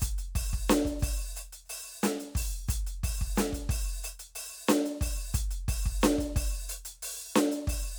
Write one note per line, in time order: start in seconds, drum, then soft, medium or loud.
0.01 closed hi-hat loud
0.01 kick medium
0.01 hi-hat pedal medium
0.19 closed hi-hat medium
0.36 open hi-hat loud
0.36 kick medium
0.54 kick medium
0.69 closed hi-hat loud
0.69 snare loud
0.69 hi-hat pedal medium
0.86 closed hi-hat medium
0.86 kick medium
1.00 open hi-hat loud
1.00 kick medium
1.00 hi-hat pedal medium
1.37 open hi-hat loud
1.37 hi-hat pedal medium
1.53 closed hi-hat medium
1.66 hi-hat pedal soft
1.70 open hi-hat loud
2.03 closed hi-hat loud
2.03 snare loud
2.03 hi-hat pedal medium
2.20 closed hi-hat medium
2.35 open hi-hat loud
2.35 kick medium
2.35 hi-hat pedal soft
2.69 closed hi-hat loud
2.69 kick medium
2.69 hi-hat pedal medium
2.87 closed hi-hat medium
3.04 open hi-hat loud
3.04 kick medium
3.22 kick medium
3.36 closed hi-hat loud
3.36 snare loud
3.36 hi-hat pedal medium
3.53 closed hi-hat medium
3.53 kick medium
3.70 open hi-hat loud
3.70 kick medium
4.04 open hi-hat loud
4.04 hi-hat pedal medium
4.20 closed hi-hat medium
4.36 open hi-hat loud
4.68 closed hi-hat loud
4.68 snare loud
4.68 hi-hat pedal medium
4.86 closed hi-hat medium
5.02 open hi-hat loud
5.02 kick medium
5.34 closed hi-hat loud
5.34 kick medium
5.34 hi-hat pedal medium
5.51 closed hi-hat medium
5.69 open hi-hat loud
5.69 kick medium
5.86 kick medium
6.02 closed hi-hat loud
6.02 snare loud
6.02 hi-hat pedal medium
6.19 closed hi-hat medium
6.19 kick medium
6.37 open hi-hat loud
6.37 kick medium
6.69 open hi-hat loud
6.69 hi-hat pedal medium
6.86 closed hi-hat loud
7.03 open hi-hat loud
7.36 open hi-hat loud
7.36 snare loud
7.36 hi-hat pedal medium
7.52 closed hi-hat medium
7.68 open hi-hat loud
7.68 kick medium